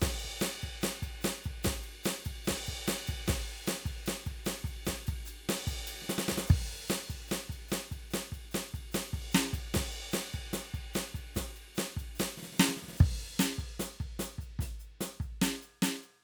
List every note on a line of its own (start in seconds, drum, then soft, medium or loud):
0.01 kick medium
0.01 snare loud
0.01 hi-hat pedal medium
0.01 ride loud
0.19 ride soft
0.24 kick soft
0.40 snare loud
0.40 hi-hat pedal medium
0.40 ride loud
0.62 kick soft
0.62 ride soft
0.81 snare loud
0.81 hi-hat pedal medium
0.81 ride medium
1.02 kick medium
1.02 ride medium
1.21 snare loud
1.21 hi-hat pedal medium
1.21 ride medium
1.44 kick medium
1.44 ride medium
1.63 kick medium
1.63 snare loud
1.63 hi-hat pedal medium
1.63 ride loud
1.76 kick soft
1.83 ride soft
2.03 snare loud
2.03 hi-hat pedal medium
2.03 ride loud
2.25 kick medium
2.25 ride medium
2.45 snare loud
2.45 hi-hat pedal medium
2.45 ride loud
2.50 kick soft
2.67 kick soft
2.67 ride medium
2.87 snare loud
2.87 hi-hat pedal medium
2.87 ride loud
3.07 kick medium
3.07 ride medium
3.27 kick medium
3.27 snare loud
3.27 hi-hat pedal medium
3.27 crash medium
3.67 snare loud
3.67 hi-hat pedal medium
3.67 ride loud
3.73 snare soft
3.86 kick medium
3.86 ride medium
4.06 snare loud
4.06 hi-hat pedal medium
4.06 ride loud
4.26 kick medium
4.26 ride medium
4.45 snare loud
4.45 hi-hat pedal medium
4.45 ride loud
4.64 kick medium
4.64 ride medium
4.85 kick soft
4.85 snare loud
4.85 hi-hat pedal medium
4.85 ride loud
5.07 kick medium
5.07 ride medium
5.25 hi-hat pedal medium
5.25 ride medium
5.49 snare loud
5.49 ride loud
5.67 kick medium
5.67 hi-hat pedal medium
5.67 ride medium
5.87 ride loud
6.02 snare soft
6.09 snare loud
6.09 hi-hat pedal medium
6.18 snare loud
6.31 kick soft
6.38 snare loud
6.47 kick loud
6.47 hi-hat pedal medium
6.47 crash loud
6.73 kick soft
6.88 snare loud
6.88 hi-hat pedal medium
6.88 ride medium
7.10 kick soft
7.10 ride medium
7.28 snare loud
7.28 hi-hat pedal medium
7.28 ride medium
7.49 kick soft
7.49 ride medium
7.69 snare loud
7.69 hi-hat pedal medium
7.73 ride medium
7.91 kick soft
7.91 ride medium
8.11 snare loud
8.11 hi-hat pedal medium
8.11 ride loud
8.32 kick soft
8.32 ride soft
8.51 snare loud
8.51 hi-hat pedal medium
8.55 ride loud
8.74 kick soft
8.74 ride soft
8.92 snare loud
8.92 hi-hat pedal medium
8.92 ride loud
9.13 kick medium
9.13 ride medium
9.22 kick soft
9.32 snare loud
9.32 hi-hat pedal medium
9.53 kick medium
9.53 ride medium
9.74 kick medium
9.74 snare loud
9.74 hi-hat pedal medium
9.74 ride loud
9.92 ride soft
10.11 snare loud
10.11 hi-hat pedal medium
10.11 ride loud
10.33 kick soft
10.33 ride soft
10.53 snare loud
10.53 hi-hat pedal medium
10.53 ride medium
10.74 kick medium
10.74 ride soft
10.94 snare loud
10.94 hi-hat pedal medium
10.94 ride medium
11.15 kick soft
11.15 ride medium
11.35 kick medium
11.35 snare loud
11.35 hi-hat pedal medium
11.35 ride loud
11.56 ride soft
11.75 snare loud
11.75 hi-hat pedal medium
11.75 ride medium
11.97 kick medium
11.97 ride medium
12.15 hi-hat pedal medium
12.20 snare loud
12.20 ride loud
12.37 snare medium
12.43 snare medium
12.52 snare soft
12.56 snare soft
12.56 hi-hat pedal medium
12.60 snare loud
12.69 snare medium
12.77 snare medium
12.83 kick soft
12.83 snare soft
12.88 snare medium
12.93 snare medium
12.93 hi-hat pedal medium
12.99 kick loud
12.99 snare soft
12.99 crash loud
13.39 closed hi-hat loud
13.39 snare loud
13.58 kick medium
13.58 closed hi-hat soft
13.80 closed hi-hat loud
13.80 snare loud
13.99 closed hi-hat soft
13.99 kick medium
14.19 closed hi-hat loud
14.19 snare loud
14.38 closed hi-hat soft
14.38 kick soft
14.59 open hi-hat medium
14.59 kick medium
14.59 snare medium
14.59 hi-hat pedal soft
14.69 kick soft
14.79 closed hi-hat soft
15.01 closed hi-hat loud
15.01 snare loud
15.20 closed hi-hat soft
15.20 kick medium
15.42 closed hi-hat loud
15.42 snare loud
15.61 closed hi-hat soft
15.82 closed hi-hat loud
15.82 snare loud
16.03 closed hi-hat soft